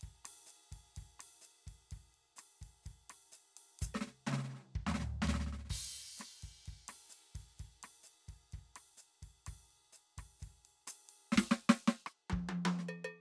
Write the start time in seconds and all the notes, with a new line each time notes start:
0.01 kick, hi-hat pedal, ride
0.08 kick
0.25 cross-stick, snare, ride
0.47 hi-hat pedal
0.51 ride
0.72 kick, ride
0.95 kick, hi-hat pedal, ride
1.03 kick
1.20 cross-stick, ride
1.42 hi-hat pedal, ride
1.67 kick, ride
1.91 kick, hi-hat pedal, ride
1.97 kick
2.15 ride
2.37 cross-stick, hi-hat pedal, ride
2.62 kick, ride
2.83 kick, hi-hat pedal, ride
2.91 kick
3.10 cross-stick, snare, ride
3.32 hi-hat pedal, ride
3.57 ride
3.80 kick, hi-hat pedal, ride
3.89 kick
3.95 snare, percussion
3.98 snare, mid tom, percussion
4.07 snare
4.27 snare, mid tom
4.32 snare, mid tom
4.36 snare, mid tom
4.40 mid tom
4.44 snare, mid tom
4.48 snare, mid tom
4.51 mid tom
4.54 snare, mid tom
4.60 snare
4.76 kick
4.82 kick
4.87 snare, floor tom
4.92 snare, floor tom
4.97 snare, floor tom
5.03 floor tom
5.22 snare, floor tom
5.28 snare, floor tom
5.34 snare, floor tom
5.40 snare, floor tom
5.45 snare, floor tom
5.53 snare
5.59 snare
5.65 snare
5.70 kick, crash
5.77 kick
6.18 cross-stick, snare, hi-hat pedal, ride
6.43 kick, ride
6.64 hi-hat pedal, ride
6.68 kick
6.73 kick
6.89 cross-stick, snare, ride
7.10 hi-hat pedal, ride
7.35 kick, ride
7.40 kick
7.58 kick, hi-hat pedal, ride
7.65 kick
7.83 cross-stick, snare, ride
8.04 hi-hat pedal
8.08 ride
8.29 kick, ride
8.51 kick, hi-hat pedal, ride
8.59 kick
8.76 cross-stick, ride
8.98 hi-hat pedal, ride
9.23 kick, ride
9.46 kick, cross-stick, snare, hi-hat pedal, ride
9.53 kick
9.71 ride
9.93 hi-hat pedal, ride
10.18 kick, cross-stick, snare, ride
10.40 kick, hi-hat pedal, ride
10.48 kick
10.66 ride
10.88 cross-stick, snare, hi-hat pedal, ride
11.09 ride
11.33 kick, snare
11.38 snare
11.52 snare
11.70 snare
11.88 snare
12.07 cross-stick
12.30 kick, high tom
12.39 kick
12.49 high tom
12.66 high tom
12.79 snare
12.89 percussion
13.05 percussion